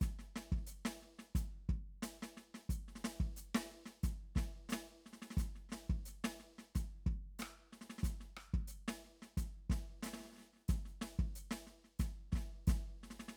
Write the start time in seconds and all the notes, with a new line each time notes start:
0.01 kick, snare, hi-hat pedal
0.19 snare
0.36 snare
0.52 kick
0.57 snare
0.67 hi-hat pedal
0.71 snare
0.85 snare
1.02 snare
1.19 snare
1.35 kick, snare, hi-hat pedal
1.69 kick
2.02 snare, hi-hat pedal
2.22 snare
2.37 snare
2.54 snare
2.69 kick, hi-hat pedal
2.88 snare
2.95 snare
3.04 snare
3.20 kick
3.36 snare, hi-hat pedal
3.55 snare
3.71 snare
3.86 snare
4.03 kick, snare, hi-hat pedal
4.35 kick, snare
4.37 snare
4.69 snare, hi-hat pedal
4.72 snare
5.06 snare
5.13 snare
5.22 snare
5.30 snare
5.37 kick, snare, hi-hat pedal
5.55 snare
5.69 snare
5.72 snare
5.90 kick
6.05 snare, hi-hat pedal
6.24 snare
6.40 snare
6.58 snare
6.75 kick, snare, hi-hat pedal
7.06 kick
7.39 cross-stick, snare, hi-hat pedal
7.73 snare
7.81 snare
7.90 snare
7.98 snare
8.03 kick, snare, hi-hat pedal
8.20 snare
8.37 cross-stick
8.54 kick
8.68 snare, hi-hat pedal
8.88 snare
9.04 snare
9.22 snare
9.37 kick, snare, hi-hat pedal
9.70 kick, snare
10.03 snare, hi-hat pedal
10.06 snare
10.13 snare
10.17 snare
10.20 snare
10.23 snare
10.25 snare
10.29 snare
10.33 snare
10.35 snare
10.38 snare
10.40 snare
10.44 snare
10.53 snare
10.56 snare
10.60 snare
10.68 kick, snare, hi-hat pedal
10.85 snare, hi-hat pedal
11.01 snare
11.19 kick
11.35 hi-hat pedal
11.51 snare
11.67 snare
11.84 snare
11.99 kick, snare, hi-hat pedal
12.32 kick, snare
12.35 snare
12.67 kick, snare, hi-hat pedal
13.03 snare
13.10 snare
13.19 snare
13.28 snare